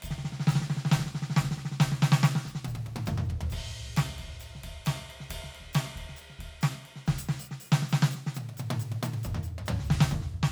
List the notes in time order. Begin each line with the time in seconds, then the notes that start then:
0.03 kick, ride, percussion
0.11 kick, snare
0.18 snare
0.25 snare
0.33 snare
0.40 snare
0.47 kick, snare, percussion
0.56 snare
0.62 snare
0.70 snare
0.77 snare
0.85 snare
0.92 snare, percussion
0.96 kick, snare
1.06 snare
1.15 snare
1.22 snare
1.30 snare
1.37 kick, snare, percussion
1.44 snare
1.51 snare
1.58 snare
1.65 snare
1.72 snare
1.80 kick, snare, percussion
1.92 snare
2.02 snare
2.12 snare
2.23 snare, percussion
2.35 snare
2.47 kick, percussion
2.55 snare
2.65 kick, high tom, percussion
2.74 kick, high tom
2.86 kick, high tom
2.96 high tom
3.06 kick, mid tom, percussion
3.15 kick, mid tom
3.24 percussion
3.29 kick, floor tom
3.41 floor tom
3.50 kick, percussion, floor tom, ride
3.85 kick
3.97 snare, ride, percussion
4.19 kick, ride
4.26 kick, snare
4.40 ride, percussion
4.55 snare
4.64 kick, ride
4.70 kick
4.85 snare, ride, percussion
5.10 ride
5.21 snare
5.30 kick, ride, percussion
5.37 kick
5.44 snare
5.55 ride
5.61 kick
5.66 kick
5.73 snare, ride, percussion
5.96 kick, ride
6.03 kick
6.09 snare
6.17 ride, percussion
6.30 snare
6.39 kick, ride
6.46 kick
6.61 snare, ride, percussion
6.86 ride
6.96 snare
7.07 kick, snare, percussion
7.15 kick, percussion
7.29 snare
7.40 percussion
7.44 percussion
7.51 snare
7.60 percussion
7.66 percussion
7.68 percussion
7.72 snare
7.82 snare
7.89 snare, percussion
8.03 snare
8.11 snare, percussion
8.27 snare
8.35 high tom, percussion
8.49 high tom
8.57 high tom, percussion
8.71 high tom
8.80 high tom, percussion
8.92 high tom
9.03 high tom, percussion
9.14 high tom
9.24 kick, mid tom, percussion
9.34 kick, mid tom
9.43 percussion
9.48 floor tom
9.59 floor tom
9.66 percussion, floor tom
9.80 snare
9.85 kick, percussion
9.91 snare
9.95 kick
10.01 snare
10.09 kick, mid tom, percussion
10.22 snare
10.34 mid tom
10.43 snare